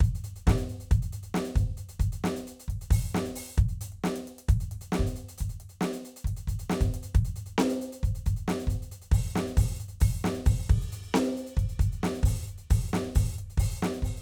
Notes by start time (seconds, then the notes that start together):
0.01 closed hi-hat, kick
0.16 closed hi-hat
0.25 closed hi-hat
0.36 closed hi-hat
0.47 kick, snare
0.58 closed hi-hat
0.70 closed hi-hat
0.81 closed hi-hat
0.92 closed hi-hat, kick
1.03 closed hi-hat
1.13 closed hi-hat
1.24 closed hi-hat
1.35 snare
1.45 closed hi-hat
1.56 closed hi-hat, kick
1.78 closed hi-hat
1.89 closed hi-hat
2.00 closed hi-hat, kick
2.13 closed hi-hat
2.25 snare
2.37 closed hi-hat
2.48 closed hi-hat
2.60 closed hi-hat
2.69 kick, closed hi-hat
2.82 closed hi-hat
2.91 open hi-hat, kick
3.05 open hi-hat
3.11 hi-hat pedal
3.15 snare
3.26 closed hi-hat, kick
3.36 open hi-hat
3.49 open hi-hat
3.55 kick, hi-hat pedal
3.59 closed hi-hat
3.69 closed hi-hat
3.81 closed hi-hat
3.93 closed hi-hat
4.04 snare
4.16 closed hi-hat
4.28 closed hi-hat
4.39 closed hi-hat
4.49 kick, closed hi-hat
4.61 closed hi-hat
4.72 kick, closed hi-hat
4.82 closed hi-hat
4.93 snare
5.00 kick
5.07 closed hi-hat
5.16 closed hi-hat
5.29 closed hi-hat
5.38 closed hi-hat, kick
5.50 closed hi-hat
5.61 closed hi-hat
5.70 closed hi-hat
5.82 snare
5.94 closed hi-hat
6.06 closed hi-hat
6.17 closed hi-hat
6.25 kick, closed hi-hat
6.37 closed hi-hat
6.48 closed hi-hat, kick
6.60 closed hi-hat
6.70 snare
6.81 closed hi-hat, kick
6.95 closed hi-hat
7.04 closed hi-hat
7.15 kick, closed hi-hat
7.25 closed hi-hat
7.36 closed hi-hat
7.59 snare
7.70 closed hi-hat
7.82 closed hi-hat
7.93 closed hi-hat
8.04 closed hi-hat, kick
8.16 closed hi-hat
8.27 closed hi-hat, kick
8.37 closed hi-hat
8.49 snare
8.60 closed hi-hat
8.68 kick
8.83 closed hi-hat
8.92 closed hi-hat
9.12 open hi-hat, kick
9.28 hi-hat pedal, open hi-hat
9.36 snare
9.48 closed hi-hat
9.58 open hi-hat, kick
9.71 open hi-hat
9.77 closed hi-hat, hi-hat pedal
9.89 closed hi-hat
10.01 open hi-hat, kick
10.12 open hi-hat
10.21 snare, hi-hat pedal
10.35 closed hi-hat
10.46 open hi-hat, kick
10.59 open hi-hat
10.67 kick, hi-hat pedal
10.71 crash
10.82 closed hi-hat
10.93 closed hi-hat
11.04 closed hi-hat
11.15 snare
11.25 closed hi-hat
11.37 closed hi-hat
11.47 closed hi-hat
11.57 kick, closed hi-hat
11.70 closed hi-hat
11.80 closed hi-hat, kick
11.93 closed hi-hat
12.04 snare
12.15 closed hi-hat
12.24 open hi-hat, kick
12.39 open hi-hat
12.44 closed hi-hat, hi-hat pedal
12.58 closed hi-hat
12.71 open hi-hat, kick
12.82 open hi-hat
12.89 hi-hat pedal
12.94 snare
13.05 closed hi-hat
13.16 open hi-hat, kick
13.30 hi-hat pedal, open hi-hat
13.39 closed hi-hat
13.51 closed hi-hat
13.58 open hi-hat, kick
13.72 open hi-hat
13.78 hi-hat pedal
13.83 snare
13.94 closed hi-hat
14.03 open hi-hat, kick
14.18 open hi-hat